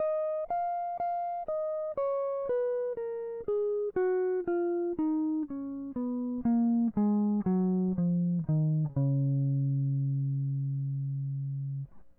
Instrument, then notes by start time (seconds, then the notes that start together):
electric guitar
0.00 D#5
0.51 F5
1.00 F5
1.49 D#5
1.98 C#5
2.49 B4
2.98 A#4
3.48 G#4
3.97 F#4
4.48 F4
4.99 D#4
5.49 C#4
5.96 B3
6.46 A#3
6.98 G#3
7.47 F#3
7.99 F3
8.50 D#3
8.98 C#3